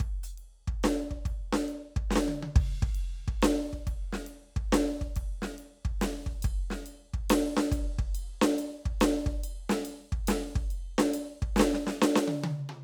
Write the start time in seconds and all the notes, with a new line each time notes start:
0.00 kick, ride
0.23 closed hi-hat
0.38 ride
0.67 kick
0.83 snare, ride
1.11 kick
1.25 kick, ride
1.53 snare
1.68 ride
1.96 kick
2.11 snare
2.16 snare
2.28 high tom
2.43 high tom
2.56 kick, crash
2.82 kick
2.95 ride
3.28 kick
3.42 snare, ride
3.73 kick
3.87 kick, ride
4.13 snare
4.26 ride
4.56 kick
4.72 snare
5.01 kick
5.16 kick, ride
5.42 snare
5.58 ride
5.85 kick
6.01 snare, ride
6.26 kick
6.42 kick, ride bell
6.70 snare
6.86 ride bell
7.13 kick
7.30 snare, ride
7.57 snare
7.71 kick, ride bell
7.98 kick
8.15 ride bell
8.41 snare
8.58 ride bell
8.85 kick
9.01 snare, ride bell
9.26 kick
9.44 ride bell
9.69 snare
9.85 ride bell
10.12 kick
10.27 snare, ride bell
10.55 kick
10.70 ride bell
10.98 snare
11.14 ride bell
11.42 kick
11.56 snare
11.59 snare
11.74 snare
11.87 snare
12.02 snare
12.16 snare
12.28 high tom
12.44 high tom
12.69 high tom